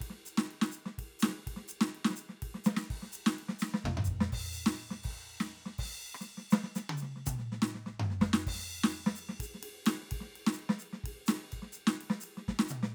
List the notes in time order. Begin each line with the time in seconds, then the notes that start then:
0.01 kick, ride
0.10 snare
0.26 hi-hat pedal, ride
0.38 snare
0.51 ride
0.62 snare
0.72 hi-hat pedal, ride
0.86 snare
0.99 kick, ride
1.20 snare, hi-hat pedal, ride
1.29 snare
1.47 kick, ride
1.53 kick, snare
1.68 hi-hat pedal, ride
1.81 snare
1.95 ride
2.05 snare
2.10 snare
2.16 hi-hat pedal, ride
2.29 snare
2.43 kick, ride
2.48 kick
2.55 snare
2.65 snare, hi-hat pedal
2.77 snare
2.91 kick, crash
3.00 kick, snare
3.13 hi-hat pedal, ride
3.27 snare
3.39 ride
3.49 snare
3.59 snare, hi-hat pedal
3.74 snare
3.85 kick, floor tom
3.98 floor tom
4.05 kick, hi-hat pedal
4.21 snare
4.33 kick, crash
4.41 kick, cross-stick
4.53 hi-hat pedal
4.57 closed hi-hat
4.67 snare
4.81 closed hi-hat
4.91 snare
5.03 kick, hi-hat pedal, crash
5.08 snare
5.13 kick
5.29 open hi-hat
5.41 snare
5.54 open hi-hat
5.66 snare
5.79 kick, crash
5.85 kick, snare
5.90 kick
6.03 open hi-hat
6.15 cross-stick
6.21 snare, hi-hat pedal
6.38 snare
6.51 snare, hi-hat pedal
6.64 snare
6.76 snare, hi-hat pedal
6.90 high tom
6.98 hi-hat pedal
7.03 snare
7.16 snare
7.26 kick, hi-hat pedal, mid tom
7.34 kick
7.38 kick, snare
7.52 snare
7.62 snare, hi-hat pedal
7.75 snare
7.87 snare
7.92 kick
8.00 floor tom
8.11 snare
8.21 kick, snare
8.34 snare
8.40 hi-hat pedal
8.47 kick, crash
8.54 kick, snare
8.58 snare
8.73 ride bell
8.84 snare
8.89 hi-hat pedal
8.97 ride
9.07 snare
9.16 hi-hat pedal, ride
9.29 snare
9.40 kick, hi-hat pedal, ride
9.55 snare
9.63 ride
9.86 snare, ride
10.11 kick, ride
10.19 kick, snare
10.36 ride
10.47 snare
10.53 hi-hat pedal
10.60 ride
10.70 snare
10.79 hi-hat pedal, ride
10.93 snare
11.04 kick, ride
11.10 kick
11.13 kick
11.27 snare, hi-hat pedal, ride
11.53 kick, ride bell
11.59 kick, snare
11.73 hi-hat pedal
11.78 ride
11.87 snare
12.01 ride
12.10 snare
12.21 hi-hat pedal, ride
12.38 snare
12.48 kick, snare
12.57 kick, snare
12.69 hi-hat pedal, mid tom
12.83 snare